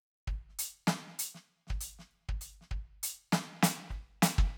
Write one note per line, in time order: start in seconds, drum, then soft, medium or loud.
0.27 kick medium
0.27 closed hi-hat soft
0.49 snare soft
0.59 closed hi-hat loud
0.87 snare loud
1.07 snare soft
1.19 closed hi-hat loud
1.34 snare soft
1.67 kick medium
1.67 snare soft
1.81 closed hi-hat medium
1.99 snare soft
2.11 closed hi-hat soft
2.29 kick medium
2.29 snare soft
2.41 closed hi-hat medium
2.61 snare soft
2.71 kick medium
2.71 closed hi-hat soft
3.03 closed hi-hat loud
3.32 closed hi-hat medium
3.32 snare loud
3.63 closed hi-hat loud
3.63 snare loud
3.90 kick medium
3.90 closed hi-hat soft
4.22 closed hi-hat loud
4.22 snare loud
4.38 kick loud